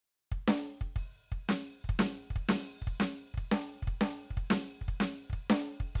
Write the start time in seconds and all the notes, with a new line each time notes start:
0.32 kick
0.47 open hi-hat, snare
0.81 kick
0.96 open hi-hat, kick
1.32 kick
1.48 open hi-hat, snare
1.84 kick
1.89 kick
1.99 open hi-hat, snare
2.30 kick
2.36 kick
2.49 open hi-hat, snare
2.82 kick
2.87 kick
3.00 open hi-hat, snare
3.34 kick
3.38 kick
3.52 open hi-hat, snare
3.57 open hi-hat
3.82 kick
3.87 kick
4.01 open hi-hat, snare
4.31 kick
4.37 kick
4.50 open hi-hat, snare
4.81 kick
4.88 kick
5.00 open hi-hat, snare
5.30 kick
5.33 kick
5.50 open hi-hat, snare
5.80 kick
5.95 kick, crash